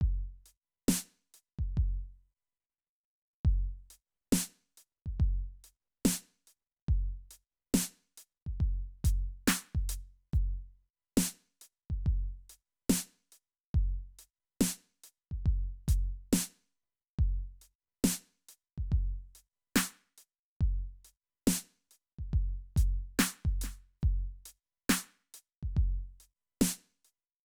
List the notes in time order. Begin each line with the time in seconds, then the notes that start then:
0.01 kick
0.46 closed hi-hat
0.88 snare
1.34 closed hi-hat
1.59 kick
1.77 kick, crash
3.45 kick, snare, crash, ride
3.90 closed hi-hat
4.32 snare
4.77 closed hi-hat
5.06 kick
5.20 kick
5.64 closed hi-hat
6.05 snare
6.47 closed hi-hat
6.88 kick
7.31 closed hi-hat
7.74 snare
8.18 closed hi-hat
8.46 kick
8.60 kick
9.04 closed hi-hat, kick
9.48 snare
9.75 kick
9.89 closed hi-hat
10.33 kick, hi-hat pedal
11.17 snare
11.61 closed hi-hat
11.90 kick
12.06 kick, crash, ride
12.49 closed hi-hat
12.89 snare
13.32 closed hi-hat
13.74 kick
14.19 closed hi-hat
14.61 snare
15.04 closed hi-hat
15.31 kick
15.46 kick
15.88 closed hi-hat, kick
16.33 snare
17.19 kick
17.61 closed hi-hat
18.04 snare
18.49 closed hi-hat
18.78 kick
18.92 kick, crash, ride
19.35 closed hi-hat
19.76 snare
20.18 closed hi-hat
20.61 kick
21.05 closed hi-hat
21.47 snare
21.91 closed hi-hat
22.19 kick
22.33 kick
22.76 closed hi-hat, kick
23.19 snare
23.45 kick
23.61 closed hi-hat, snare
24.01 kick, hi-hat pedal
24.46 closed hi-hat
24.89 snare
25.34 closed hi-hat
25.63 kick
25.77 kick, crash, ride
26.20 closed hi-hat
26.61 snare
27.05 closed hi-hat